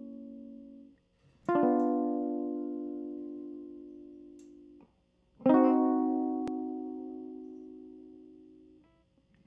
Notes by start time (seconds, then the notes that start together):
1.49 F4
1.55 D4
1.62 B3
5.46 C4 D#4
5.54 F#4